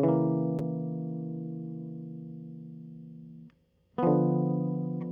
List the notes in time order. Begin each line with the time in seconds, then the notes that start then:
0.00 C#3 E3
0.08 A#3
3.98 B3
4.03 F3
4.08 D3